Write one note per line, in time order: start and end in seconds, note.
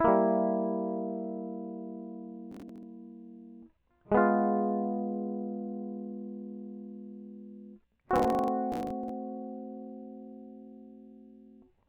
0.00 3.71 E4
0.04 3.65 G3
0.04 3.69 A#3
4.12 7.79 G#3
4.12 7.77 B3
4.17 7.79 F4
8.10 11.69 C4
8.10 11.73 F#4
8.15 11.66 A3